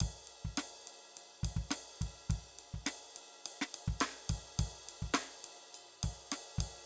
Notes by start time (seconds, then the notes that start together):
0.00 kick, ride
0.27 ride
0.45 kick
0.57 snare, ride
0.87 ride
1.17 ride
1.43 kick, ride
1.56 kick
1.70 snare, ride
2.01 kick, ride
2.30 kick, ride
2.59 ride
2.74 kick
2.82 kick
2.86 snare, ride
3.16 ride
3.46 ride
3.61 snare
3.74 ride
3.88 kick
4.00 snare, ride
4.29 kick, ride
4.59 kick, ride
4.89 ride
5.02 kick
5.10 kick, snare
5.15 ride
5.44 ride
5.74 ride bell
6.03 kick, ride
6.32 snare, ride
6.58 kick, ride